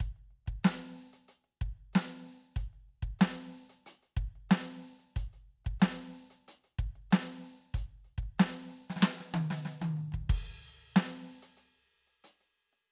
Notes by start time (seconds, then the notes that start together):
0.01 closed hi-hat, kick
0.17 closed hi-hat
0.32 closed hi-hat
0.47 kick, closed hi-hat
0.65 closed hi-hat, snare
0.97 closed hi-hat
1.14 closed hi-hat
1.29 closed hi-hat
1.45 closed hi-hat
1.62 kick, closed hi-hat
1.78 closed hi-hat
1.94 closed hi-hat, snare
2.26 closed hi-hat
2.41 closed hi-hat
2.57 closed hi-hat, kick
2.74 closed hi-hat
2.90 closed hi-hat
3.03 kick, closed hi-hat
3.20 closed hi-hat, snare
3.71 closed hi-hat
3.87 closed hi-hat
4.04 closed hi-hat
4.18 kick, closed hi-hat
4.37 closed hi-hat
4.50 closed hi-hat, snare
4.85 closed hi-hat
5.00 closed hi-hat
5.17 closed hi-hat, kick
5.34 closed hi-hat
5.66 kick, closed hi-hat
5.81 closed hi-hat, snare
6.15 closed hi-hat
6.31 closed hi-hat
6.49 closed hi-hat
6.65 closed hi-hat
6.80 closed hi-hat, kick
6.97 closed hi-hat
7.12 closed hi-hat, snare
7.44 closed hi-hat
7.60 closed hi-hat
7.75 closed hi-hat, kick
7.91 closed hi-hat
8.05 closed hi-hat
8.19 kick
8.24 closed hi-hat
8.40 closed hi-hat, snare
8.70 closed hi-hat
8.91 snare
8.97 snare
9.02 snare
9.03 snare
9.21 snare
9.35 high tom
9.51 snare
9.65 snare, hi-hat pedal
9.83 high tom
9.98 mid tom
10.13 kick, floor tom
10.31 kick, crash
10.45 closed hi-hat
10.62 closed hi-hat
10.79 closed hi-hat
10.97 snare
11.15 closed hi-hat
11.27 closed hi-hat
11.43 closed hi-hat
11.58 closed hi-hat
11.75 closed hi-hat
12.08 closed hi-hat
12.25 closed hi-hat
12.41 closed hi-hat
12.57 closed hi-hat
12.74 closed hi-hat